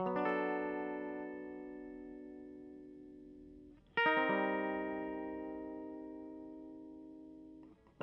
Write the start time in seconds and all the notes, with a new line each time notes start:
0.00 F#3
0.06 B3
0.16 D4
4.06 D#4
4.17 C4
4.30 G3